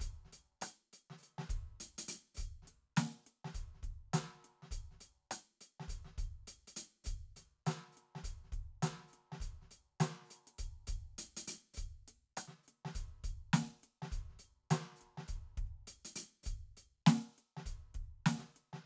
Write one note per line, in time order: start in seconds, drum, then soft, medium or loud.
0.01 closed hi-hat medium
0.01 kick soft
0.06 kick soft
0.26 snare soft
0.30 closed hi-hat medium
0.30 snare soft
0.34 snare soft
0.62 closed hi-hat loud
0.62 cross-stick medium
0.67 closed hi-hat medium
0.94 closed hi-hat medium
1.11 snare soft
1.19 hi-hat pedal soft
1.24 closed hi-hat soft
1.39 snare medium
1.50 kick soft
1.50 closed hi-hat medium
1.56 kick soft
1.59 kick soft
1.81 closed hi-hat medium
1.99 closed hi-hat loud
2.09 closed hi-hat loud
2.36 closed hi-hat medium
2.36 kick soft
2.36 hi-hat pedal soft
2.41 closed hi-hat medium
2.63 snare soft
2.68 closed hi-hat medium
2.98 closed hi-hat loud
2.98 snare medium
3.27 closed hi-hat soft
3.45 snare medium
3.55 closed hi-hat medium
3.55 kick soft
3.75 snare soft
3.84 kick soft
3.84 closed hi-hat soft
4.14 closed hi-hat loud
4.14 snare medium
4.45 closed hi-hat soft
4.63 snare soft
4.72 closed hi-hat medium
4.72 kick soft
4.92 snare soft
4.97 snare soft
5.00 closed hi-hat medium
5.00 snare soft
5.32 closed hi-hat loud
5.32 cross-stick medium
5.62 closed hi-hat medium
5.81 snare soft
5.89 closed hi-hat medium
5.89 kick soft
6.06 snare soft
6.19 closed hi-hat soft
6.19 kick soft
6.25 kick soft
6.27 kick soft
6.48 closed hi-hat medium
6.68 closed hi-hat medium
6.77 closed hi-hat loud
7.05 closed hi-hat medium
7.05 kick soft
7.05 hi-hat pedal medium
7.37 closed hi-hat soft
7.37 snare soft
7.67 closed hi-hat medium
7.67 snare medium
7.71 closed hi-hat medium
7.93 hi-hat pedal soft
7.98 closed hi-hat soft
8.16 snare soft
8.25 closed hi-hat medium
8.25 kick soft
8.45 snare soft
8.53 kick soft
8.53 closed hi-hat soft
8.83 closed hi-hat loud
8.83 snare medium
8.99 snare soft
9.09 hi-hat pedal soft
9.14 closed hi-hat soft
9.33 snare soft
9.41 closed hi-hat medium
9.41 kick soft
9.62 snare soft
9.69 closed hi-hat medium
9.69 snare soft
10.01 closed hi-hat loud
10.01 snare loud
10.24 snare soft
10.24 hi-hat pedal soft
10.31 closed hi-hat medium
10.48 open hi-hat medium
10.59 closed hi-hat medium
10.59 kick soft
10.88 closed hi-hat medium
10.88 kick soft
10.98 kick soft
11.19 closed hi-hat loud
11.38 closed hi-hat loud
11.49 closed hi-hat loud
11.75 closed hi-hat medium
11.75 kick soft
11.75 hi-hat pedal medium
12.09 closed hi-hat medium
12.38 closed hi-hat loud
12.38 cross-stick medium
12.49 snare soft
12.64 hi-hat pedal soft
12.69 closed hi-hat soft
12.86 snare medium
12.96 closed hi-hat medium
12.96 kick soft
13.25 closed hi-hat medium
13.25 kick soft
13.54 closed hi-hat loud
13.54 snare loud
13.84 closed hi-hat soft
14.03 snare medium
14.13 closed hi-hat medium
14.13 kick soft
14.18 kick soft
14.30 snare soft
14.34 snare soft
14.40 closed hi-hat soft
14.71 closed hi-hat loud
14.71 snare loud
14.97 hi-hat pedal soft
15.02 kick soft
15.02 closed hi-hat soft
15.18 snare soft
15.29 closed hi-hat medium
15.29 kick soft
15.46 snare soft
15.58 kick soft
15.58 closed hi-hat soft
15.67 kick soft
15.88 closed hi-hat medium
16.06 closed hi-hat medium
16.17 closed hi-hat loud
16.44 closed hi-hat medium
16.44 kick soft
16.44 hi-hat pedal medium
16.78 closed hi-hat soft
17.07 closed hi-hat loud
17.07 snare loud
17.39 closed hi-hat soft
17.58 snare soft
17.67 closed hi-hat medium
17.67 kick soft
17.95 kick soft
17.95 closed hi-hat soft
18.27 closed hi-hat loud
18.27 snare loud
18.39 snare soft
18.57 closed hi-hat soft
18.74 snare soft